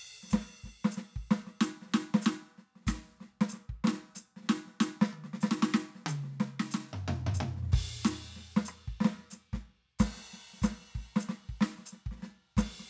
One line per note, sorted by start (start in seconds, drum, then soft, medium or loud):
0.24 snare soft
0.28 snare soft
0.30 snare soft
0.30 hi-hat pedal loud
0.32 kick soft
0.32 snare soft
0.34 snare loud
0.54 snare soft
0.65 kick soft
0.65 snare soft
0.85 snare loud
0.92 hi-hat pedal loud
0.98 snare medium
1.17 kick soft
1.32 snare loud
1.48 snare soft
1.62 snare loud
1.62 hi-hat pedal loud
1.83 snare soft
1.87 snare soft
1.90 snare soft
1.93 snare soft
1.95 snare loud
2.15 snare loud
2.23 hi-hat pedal loud
2.27 snare loud
2.59 snare soft
2.76 snare soft
2.81 snare soft
2.85 snare soft
2.88 kick medium
2.88 snare soft
2.88 snare loud
2.88 hi-hat pedal loud
2.94 snare soft
3.09 snare soft
3.12 snare soft
3.15 snare soft
3.18 snare soft
3.21 snare soft
3.42 snare loud
3.50 hi-hat pedal loud
3.54 snare soft
3.70 kick soft
3.85 snare loud
3.88 snare loud
3.94 snare soft
4.04 snare soft
4.16 snare soft
4.16 hi-hat pedal loud
4.26 snare soft
4.37 snare soft
4.41 snare soft
4.44 snare soft
4.50 snare loud
4.68 snare soft
4.74 snare soft
4.77 snare soft
4.79 snare soft
4.81 snare loud
4.81 hi-hat pedal loud
5.02 snare loud
5.14 high tom medium
5.25 snare soft
5.34 snare medium
5.42 snare loud
5.42 hi-hat pedal loud
5.52 snare loud
5.63 snare loud
5.75 snare loud
5.96 snare soft
5.99 snare soft
6.01 snare soft
6.05 snare soft
6.05 hi-hat pedal loud
6.05 high tom loud
6.25 snare soft
6.29 snare soft
6.32 snare soft
6.36 snare soft
6.40 snare soft
6.40 snare medium
6.61 snare loud
6.72 snare loud
6.72 hi-hat pedal loud
6.94 floor tom medium
7.09 floor tom loud
7.28 floor tom loud
7.35 hi-hat pedal loud
7.41 floor tom loud
7.54 kick soft
7.54 snare soft
7.64 snare soft
7.68 snare soft
7.71 kick loud
7.71 snare soft
7.71 ride loud
7.75 snare soft
8.06 snare loud
8.06 hi-hat pedal loud
8.25 snare soft
8.30 snare soft
8.33 snare soft
8.36 snare soft
8.57 snare loud
8.66 cross-stick medium
8.66 hi-hat pedal loud
8.89 kick soft
9.01 snare medium
9.06 snare loud
9.19 snare soft
9.31 snare soft
9.31 hi-hat pedal loud
9.54 kick medium
9.54 snare medium
10.00 kick medium
10.00 snare loud
10.00 hi-hat pedal loud
10.00 crash medium
10.17 snare soft
10.34 snare soft
10.54 snare soft
10.58 snare soft
10.63 kick medium
10.63 snare loud
10.63 hi-hat pedal loud
10.69 snare soft
10.82 snare soft
10.86 snare soft
10.96 kick medium
10.96 snare soft
11.03 snare soft
11.17 snare loud
11.17 hi-hat pedal loud
11.30 snare medium
11.50 kick soft
11.62 snare loud
11.63 snare loud
11.79 snare soft
11.87 hi-hat pedal loud
11.93 snare soft
12.07 kick medium
12.12 snare soft
12.16 snare soft
12.20 snare soft
12.23 snare medium
12.28 snare soft
12.58 kick medium
12.58 snare loud
12.58 hi-hat pedal loud
12.58 ride medium
12.81 snare soft